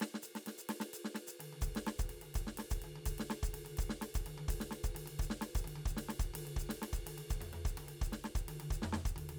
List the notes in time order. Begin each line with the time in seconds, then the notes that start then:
0.01 snare, ride
0.15 snare
0.23 hi-hat pedal, ride
0.36 snare, ride
0.47 snare, ride
0.59 hi-hat pedal
0.70 snare, ride
0.81 snare, ride
0.94 hi-hat pedal, ride
1.05 snare
1.15 snare, ride
1.28 hi-hat pedal, ride
1.40 high tom, ride
1.53 high tom
1.62 kick, hi-hat pedal, ride
1.76 snare, ride
1.87 snare, ride
1.99 kick, hi-hat pedal
2.10 high tom, ride
2.22 high tom, ride
2.35 kick, hi-hat pedal, ride
2.48 snare
2.58 snare, ride
2.71 kick, hi-hat pedal, ride
2.83 high tom, ride
2.96 high tom
3.06 kick, hi-hat pedal, ride
3.19 snare, ride
3.31 snare, ride
3.43 kick, hi-hat pedal
3.54 high tom, ride
3.66 high tom, ride
3.78 kick, hi-hat pedal, ride
3.90 snare
4.02 snare, ride
4.15 kick, hi-hat pedal, ride
4.27 high tom, ride
4.38 high tom
4.49 kick, hi-hat pedal, ride
4.61 snare, ride
4.72 snare, ride
4.84 kick, hi-hat pedal
4.96 high tom, ride
5.07 high tom, ride
5.20 kick, hi-hat pedal, ride
5.31 snare
5.42 snare, ride
5.56 kick, hi-hat pedal, ride
5.65 high tom, ride
5.76 high tom
5.86 kick, hi-hat pedal
5.97 snare, ride
6.09 snare, ride
6.20 kick, hi-hat pedal
6.34 high tom, ride
6.46 high tom, ride
6.57 kick, hi-hat pedal
6.70 snare, ride
6.83 snare, ride
6.93 kick, hi-hat pedal
7.07 high tom, ride
7.18 high tom, ride
7.31 kick, hi-hat pedal
7.41 floor tom, ride
7.54 floor tom, ride
7.66 kick, hi-hat pedal
7.78 high tom, ride
7.88 high tom, ride
8.02 kick, hi-hat pedal
8.13 snare, ride
8.25 snare, ride
8.36 kick, hi-hat pedal
8.49 high tom, ride
8.61 high tom, ride
8.71 kick, hi-hat pedal
8.83 snare, floor tom
8.93 snare, floor tom
9.06 kick, hi-hat pedal
9.17 high tom, ride
9.30 high tom, ride